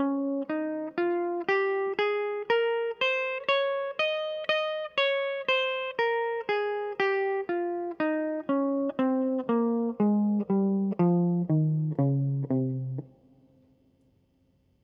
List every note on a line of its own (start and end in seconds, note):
0.00 0.47 C#4
0.51 0.93 D#4
0.99 1.45 F4
1.49 1.96 G4
2.00 2.47 G#4
2.51 2.95 A#4
3.02 3.47 C5
3.49 3.95 C#5
4.00 4.49 D#5
4.50 4.91 D#5
4.99 5.46 C#5
5.49 5.94 C5
6.00 6.44 A#4
6.50 6.97 G#4
7.01 7.46 G4
7.50 7.96 F4
8.01 8.43 D#4
8.50 8.94 C#4
9.00 9.44 C4
9.50 9.94 A#3
10.03 10.45 G#3
10.51 10.96 G3
11.01 11.47 F3
11.51 11.96 D#3
12.00 12.48 C#3
12.52 13.04 C3